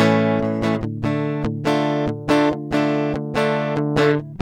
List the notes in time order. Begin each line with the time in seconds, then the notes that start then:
0.00 A2 E3 A3 C#4 E4
0.42 A2 E3
0.65 A2 E3 A3 C#4
0.85 A2 D3
1.05 A2 D3 A3 D4
1.47 A2 D3
1.67 D3 A3 D4 F4
2.10 A2 D3
2.31 D3 A3 D4 F4
2.54 D3
2.74 D3 A3 D4 F4
3.16 D3 A3
3.37 D3 A3 D4 F4
3.79 D3 A3
3.99 D3 A3 D4 F4